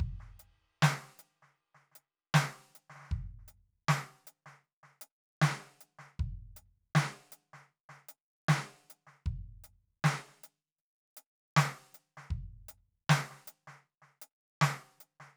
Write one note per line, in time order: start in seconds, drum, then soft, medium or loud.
0.00 kick medium
0.00 closed hi-hat soft
0.21 snare soft
0.40 closed hi-hat medium
0.83 snare loud
1.03 snare soft
1.20 closed hi-hat medium
1.43 snare soft
1.57 closed hi-hat soft
1.75 snare soft
1.92 closed hi-hat medium
1.92 snare soft
2.35 snare loud
2.53 snare soft
2.76 closed hi-hat medium
2.90 snare soft
2.96 snare soft
3.00 snare soft
3.04 snare soft
3.07 snare soft
3.12 kick medium
3.12 snare soft
3.16 snare soft
3.21 snare soft
3.39 snare soft
3.48 closed hi-hat medium
3.89 snare loud
4.10 snare soft
4.27 closed hi-hat medium
4.46 snare soft
4.64 closed hi-hat soft
4.84 snare soft
5.02 closed hi-hat loud
5.42 snare loud
5.60 snare soft
5.81 closed hi-hat medium
5.99 snare soft
6.20 kick medium
6.57 closed hi-hat medium
6.96 snare loud
7.33 closed hi-hat medium
7.54 snare soft
7.90 snare soft
8.09 closed hi-hat medium
8.49 snare loud
8.91 closed hi-hat medium
9.07 snare soft
9.26 kick medium
9.64 closed hi-hat medium
10.05 snare loud
10.29 snare soft
10.44 closed hi-hat medium
10.79 closed hi-hat soft
11.17 closed hi-hat medium
11.57 snare loud
11.77 snare soft
11.95 closed hi-hat medium
12.18 snare soft
12.31 kick soft
12.38 kick soft
12.69 closed hi-hat medium
13.10 snare loud
13.31 snare soft
13.48 closed hi-hat loud
13.68 snare soft
14.02 snare soft
14.22 closed hi-hat medium
14.62 snare loud
14.80 snare soft
15.01 closed hi-hat medium
15.21 snare soft